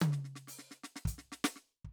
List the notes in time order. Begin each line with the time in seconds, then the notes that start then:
0.00 hi-hat pedal, high tom
0.12 snare
0.24 snare
0.35 snare
0.47 snare, hi-hat pedal
0.58 snare
0.71 snare
0.83 snare
0.96 snare
1.05 open hi-hat, kick
1.18 snare
1.32 snare
1.44 snare
1.56 snare
1.84 kick